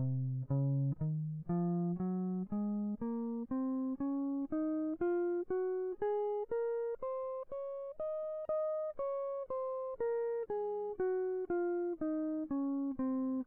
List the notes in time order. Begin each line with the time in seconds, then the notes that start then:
0.00 C3
0.52 C#3
1.03 D#3
1.50 F3
2.01 F#3
2.53 G#3
3.02 A#3
3.52 C4
4.01 C#4
4.53 D#4
5.02 F4
5.51 F#4
6.02 G#4
6.52 A#4
7.03 C5
7.52 C#5
8.00 D#5
8.49 D#5
8.99 C#5
9.51 C5
10.01 A#4
10.50 G#4
11.00 F#4
11.51 F4
12.02 D#4
12.51 C#4
13.00 C4